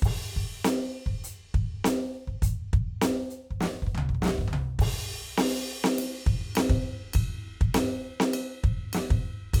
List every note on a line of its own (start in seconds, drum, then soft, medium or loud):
0.02 kick loud
0.02 hi-hat pedal soft
0.02 crash loud
0.36 kick medium
0.64 closed hi-hat loud
0.64 snare loud
1.06 kick medium
1.24 open hi-hat loud
1.54 kick loud
1.84 closed hi-hat loud
1.84 snare loud
2.27 kick medium
2.42 closed hi-hat loud
2.42 kick loud
2.73 kick loud
3.02 closed hi-hat loud
3.02 snare loud
3.30 closed hi-hat medium
3.50 kick medium
3.61 snare loud
3.64 kick soft
3.64 snare loud
3.82 kick medium
3.82 snare soft
3.86 kick medium
3.86 snare soft
3.95 floor tom loud
3.95 high tom loud
4.09 kick medium
4.15 kick medium
4.22 snare loud
4.26 snare loud
4.38 kick medium
4.41 kick medium
4.41 snare soft
4.48 kick soft
4.48 floor tom loud
4.53 high tom loud
4.79 kick loud
4.79 crash loud
5.38 snare loud
5.38 crash loud
5.84 snare loud
5.98 ride loud
6.26 kick loud
6.55 snare loud
6.55 ride bell loud
6.69 kick loud
7.13 kick loud
7.13 ride bell loud
7.61 kick loud
7.74 snare loud
7.74 ride bell loud
8.20 snare loud
8.34 ride bell loud
8.64 kick loud
8.93 snare loud
8.93 ride bell loud
9.10 kick loud
9.53 kick loud
9.53 ride bell loud
9.53 crash medium